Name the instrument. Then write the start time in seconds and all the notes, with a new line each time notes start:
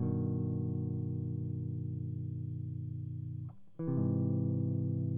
electric guitar
0.00 G2 B2 D#3
3.80 E3
3.89 C3
3.99 G#2